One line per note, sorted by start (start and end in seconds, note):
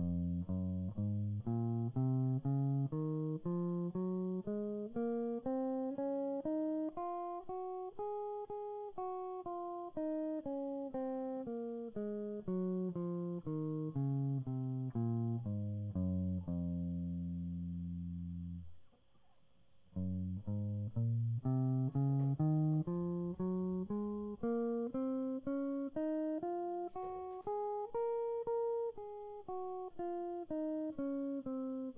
0.01 0.46 F2
0.52 0.93 F#2
1.01 1.44 G#2
1.49 1.92 A#2
1.98 2.42 C3
2.47 2.90 C#3
2.94 3.41 D#3
3.47 3.93 F3
3.96 4.44 F#3
4.48 4.90 G#3
4.97 5.41 A#3
5.47 5.99 C4
5.99 6.44 C#4
6.46 6.92 D#4
6.98 7.46 F4
7.50 7.94 F#4
8.00 8.47 G#4
8.51 8.94 G#4
8.99 9.45 F#4
9.47 9.93 F4
9.98 10.43 D#4
10.47 10.93 C#4
10.95 11.48 C4
11.48 11.93 A#3
11.98 12.44 G#3
12.49 12.94 F#3
12.97 13.42 F3
13.48 13.93 D#3
13.97 14.44 C#3
14.49 14.93 C3
14.97 15.41 A#2
15.49 15.95 G#2
15.98 16.43 F#2
16.50 18.69 F2
20.00 20.41 F#2
20.51 20.92 G#2
20.99 21.42 A#2
21.47 21.92 C3
21.97 22.37 C#3
22.41 22.85 D#3
22.89 23.36 F3
23.41 23.88 F#3
23.91 24.38 G#3
24.44 24.93 A#3
24.95 25.42 C4
25.48 25.91 C#4
25.97 26.42 D#4
26.43 26.90 F4
26.96 27.44 F#4
27.47 27.92 G#4
27.95 28.45 A#4
28.48 28.93 A#4
28.98 29.45 G#4
29.49 29.92 F#4
30.00 30.47 F4
30.51 30.93 D#4
31.00 31.44 C#4
31.47 31.94 C4